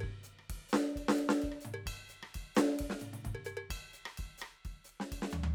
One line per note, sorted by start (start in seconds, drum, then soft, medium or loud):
0.01 kick soft
0.01 percussion medium
0.09 kick soft
0.24 hi-hat pedal medium
0.39 cross-stick soft
0.50 kick soft
0.50 ride medium
0.69 hi-hat pedal medium
0.73 snare loud
0.96 kick soft
0.96 ride bell medium
1.09 snare loud
1.15 hi-hat pedal medium
1.15 ride medium
1.29 snare medium
1.42 kick soft
1.42 ride bell medium
1.50 kick soft
1.50 cross-stick soft
1.61 hi-hat pedal medium
1.65 mid tom medium
1.74 percussion loud
1.86 kick soft
1.86 ride bell loud
1.92 kick soft
2.08 hi-hat pedal medium
2.08 ride soft
2.23 cross-stick medium
2.35 kick soft
2.35 ride bell medium
2.55 snare loud
2.55 hi-hat pedal medium
2.79 kick soft
2.79 ride medium
2.87 kick soft
2.87 snare medium
3.00 hi-hat pedal medium
3.00 mid tom medium
3.14 mid tom medium
3.25 kick soft
3.25 mid tom medium
3.35 percussion medium
3.45 hi-hat pedal medium
3.45 percussion loud
3.57 percussion loud
3.70 kick soft
3.70 ride bell loud
3.92 hi-hat pedal medium
3.92 ride soft
4.06 cross-stick medium
4.18 kick soft
4.18 ride bell medium
4.25 kick soft
4.38 cross-stick medium
4.38 hi-hat pedal medium
4.65 kick soft
4.65 ride bell soft
4.85 hi-hat pedal medium
4.90 ride soft
5.00 snare medium
5.12 kick soft
5.12 ride bell medium
5.22 snare medium
5.31 floor tom medium
5.31 hi-hat pedal medium
5.44 floor tom medium